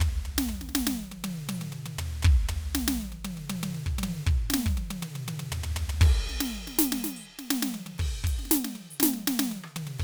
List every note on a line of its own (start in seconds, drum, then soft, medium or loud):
0.01 kick medium
0.01 floor tom loud
0.26 floor tom medium
0.39 snare loud
0.49 floor tom medium
0.62 snare medium
0.70 snare soft
0.76 snare loud
0.76 hi-hat pedal medium
0.88 snare loud
1.12 high tom medium
1.25 high tom loud
1.49 hi-hat pedal medium
1.49 high tom loud
1.62 high tom medium
1.73 mid tom medium
1.86 mid tom medium
1.99 floor tom loud
2.23 kick loud
2.23 floor tom loud
2.49 floor tom loud
2.76 snare loud
2.88 snare loud
3.02 high tom soft
3.13 high tom medium
3.25 high tom loud
3.38 high tom soft
3.50 high tom loud
3.64 high tom loud
3.75 mid tom soft
3.87 kick medium
3.99 high tom loud
4.04 high tom loud
4.27 kick medium
4.51 snare loud
4.54 snare loud
4.67 kick medium
4.78 high tom medium
4.91 high tom loud
5.03 mid tom loud
5.16 mid tom medium
5.29 mid tom loud
5.40 mid tom medium
5.53 floor tom loud
5.64 floor tom loud
5.77 floor tom loud
5.90 floor tom loud
6.02 kick loud
6.02 ride loud
6.30 snare soft
6.41 snare loud
6.68 snare medium
6.77 snare soft
6.79 snare loud
6.93 snare loud
7.05 snare medium
7.17 open hi-hat medium
7.39 snare medium
7.51 snare loud
7.63 snare loud
7.75 high tom medium
7.87 high tom medium
7.99 kick medium
7.99 crash medium
8.25 kick medium
8.25 ride loud
8.40 snare soft
8.46 snare soft
8.52 snare loud
8.65 snare medium
8.76 high tom medium
8.91 hi-hat pedal medium
9.01 snare loud
9.03 snare loud
9.14 snare soft
9.28 snare loud
9.40 snare loud
9.52 high tom medium
9.64 cross-stick medium
9.77 mid tom loud
9.88 mid tom medium
9.99 kick medium
9.99 crash medium